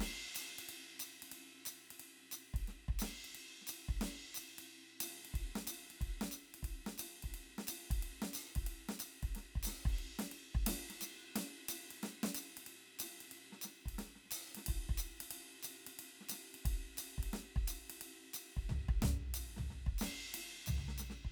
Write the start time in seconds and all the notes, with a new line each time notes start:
0.01 snare, ride
0.35 hi-hat pedal, ride
0.59 ride
0.69 ride
1.00 hi-hat pedal, ride
1.23 ride
1.32 ride
1.66 hi-hat pedal, ride
1.91 ride
2.00 ride
2.32 hi-hat pedal, ride
2.54 kick, ride
2.68 snare, ride
2.89 kick
2.99 snare, hi-hat pedal, ride
3.25 ride
3.35 ride
3.62 snare
3.67 hi-hat pedal, ride
3.89 kick
4.01 snare, ride
4.35 hi-hat pedal, ride
4.59 ride
5.01 hi-hat pedal, ride
5.25 ride
5.34 kick, ride
5.56 snare
5.67 hi-hat pedal, ride
5.91 ride
6.01 kick, ride
6.21 snare
6.32 hi-hat pedal, ride
6.55 ride
6.63 kick, ride
6.87 snare
6.98 hi-hat pedal, ride
7.23 kick, ride
7.34 ride
7.59 snare
7.68 hi-hat pedal, ride
7.91 kick, ride
8.03 ride
8.22 snare
8.34 hi-hat pedal, ride
8.56 kick, ride
8.67 ride
8.89 snare
9.00 hi-hat pedal, ride
9.23 kick, ride
9.35 snare, ride
9.56 kick
9.63 snare, hi-hat pedal, ride
9.86 kick, ride
9.99 ride
10.19 snare, ride
10.32 ride
10.55 kick
10.67 snare, ride
10.90 snare, ride
11.01 snare, hi-hat pedal, ride
11.36 snare, ride
11.69 hi-hat pedal, ride
11.91 ride
12.03 snare, ride
12.24 snare
12.35 hi-hat pedal, ride
12.57 ride
12.67 ride
12.87 snare
12.99 hi-hat pedal, ride
13.21 ride
13.32 ride
13.53 snare
13.62 snare, hi-hat pedal, ride
13.86 kick, ride
13.99 snare, ride
14.04 snare
14.08 snare
14.16 snare
14.26 snare
14.31 hi-hat pedal, ride
14.55 snare, ride
14.67 kick, ride
14.90 kick
14.98 hi-hat pedal, ride
15.21 ride
15.31 ride
15.63 hi-hat pedal, ride
15.87 ride
15.99 ride
16.21 snare
16.29 snare, hi-hat pedal, ride
16.55 ride
16.65 kick, ride
16.98 hi-hat pedal, ride
17.18 kick
17.23 ride
17.34 snare, ride
17.56 kick
17.68 hi-hat pedal, ride
17.90 ride
18.02 ride
18.34 hi-hat pedal, ride
18.57 kick
18.70 snare, floor tom
18.89 kick
19.02 snare, floor tom
19.34 hi-hat pedal, ride
19.57 snare, floor tom
19.70 snare, floor tom
19.87 kick
19.99 snare, hi-hat pedal
20.03 ride
20.34 ride
20.67 floor tom, hi-hat pedal
20.78 high tom
20.89 snare
20.98 snare, hi-hat pedal
21.10 snare
21.25 kick